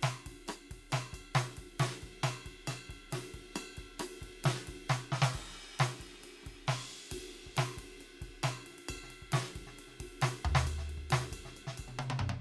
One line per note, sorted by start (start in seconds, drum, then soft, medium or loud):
0.01 snare loud
0.01 hi-hat pedal soft
0.01 ride bell loud
0.16 snare soft
0.26 kick soft
0.26 ride medium
0.32 kick soft
0.47 cross-stick medium
0.47 hi-hat pedal soft
0.47 ride bell medium
0.71 kick soft
0.71 ride medium
0.77 kick soft
0.90 snare medium
0.90 hi-hat pedal medium
0.90 ride bell loud
1.13 kick soft
1.13 ride bell medium
1.19 kick soft
1.34 snare loud
1.34 hi-hat pedal medium
1.34 ride loud
1.49 snare soft
1.57 kick soft
1.57 ride medium
1.64 kick soft
1.79 snare loud
1.79 hi-hat pedal medium
1.79 ride loud
2.03 kick soft
2.03 ride medium
2.09 kick soft
2.24 snare medium
2.24 hi-hat pedal medium
2.24 ride bell loud
2.46 kick soft
2.46 ride medium
2.52 kick soft
2.67 snare medium
2.67 hi-hat pedal medium
2.67 ride bell loud
2.90 kick soft
2.90 ride medium
2.96 kick soft
3.11 snare medium
3.11 hi-hat pedal soft
3.11 ride loud
3.34 kick soft
3.34 ride medium
3.40 kick soft
3.55 cross-stick medium
3.55 hi-hat pedal soft
3.55 ride bell loud
3.77 kick soft
3.77 ride medium
3.84 kick soft
3.99 cross-stick medium
3.99 hi-hat pedal medium
3.99 ride loud
4.22 kick soft
4.22 ride medium
4.28 kick soft
4.44 snare loud
4.44 hi-hat pedal medium
4.44 ride loud
4.68 kick soft
4.68 ride medium
4.74 kick soft
4.89 snare loud
4.89 hi-hat pedal medium
4.89 ride bell medium
5.12 snare loud
5.22 snare loud
5.33 kick soft
5.33 snare soft
5.33 hi-hat pedal medium
5.33 crash medium
5.42 kick soft
5.50 snare soft
5.80 snare loud
5.80 hi-hat pedal soft
5.80 ride loud
5.92 snare soft
6.00 kick soft
6.00 ride medium
6.13 snare soft
6.18 snare soft
6.24 hi-hat pedal soft
6.24 ride medium
6.43 kick soft
6.43 cross-stick soft
6.43 ride medium
6.52 kick soft
6.68 snare loud
6.68 hi-hat pedal medium
6.68 ride loud
6.80 snare soft
6.92 ride soft
7.10 kick soft
7.10 snare soft
7.10 hi-hat pedal medium
7.10 ride loud
7.18 kick soft
7.36 ride soft
7.47 kick soft
7.56 snare loud
7.56 hi-hat pedal medium
7.56 ride loud
7.78 kick soft
7.78 ride medium
7.83 kick soft
8.00 hi-hat pedal soft
8.00 ride medium
8.16 snare soft
8.22 kick soft
8.22 ride medium
8.29 kick soft
8.44 snare medium
8.44 hi-hat pedal medium
8.44 ride bell loud
8.57 snare soft
8.67 snare soft
8.67 ride medium
8.79 ride medium
8.89 kick soft
8.89 hi-hat pedal medium
8.89 ride bell loud
8.96 kick soft
9.04 snare soft
9.08 snare soft
9.08 ride medium
9.22 kick soft
9.33 snare loud
9.33 hi-hat pedal medium
9.33 ride loud
9.43 snare soft
9.56 kick soft
9.56 ride medium
9.62 kick soft
9.67 snare soft
9.78 hi-hat pedal soft
9.78 ride medium
9.88 snare soft
9.94 snare soft
10.01 kick soft
10.01 ride medium
10.22 snare loud
10.22 hi-hat pedal medium
10.22 ride loud
10.45 floor tom loud
10.55 snare loud
10.66 kick soft
10.66 hi-hat pedal medium
10.66 ride bell medium
10.72 kick soft
10.79 snare soft
10.86 snare soft
10.86 ride medium
10.98 kick soft
11.10 snare loud
11.10 hi-hat pedal medium
11.10 ride loud
11.21 snare soft
11.32 kick soft
11.32 ride bell medium
11.39 kick soft
11.46 snare soft
11.56 hi-hat pedal soft
11.56 ride bell medium
11.67 snare medium
11.78 kick soft
11.78 ride bell medium
11.86 kick soft
11.86 high tom medium
11.99 hi-hat pedal medium
11.99 high tom loud
12.10 high tom loud
12.20 kick soft
12.20 mid tom loud
12.30 mid tom loud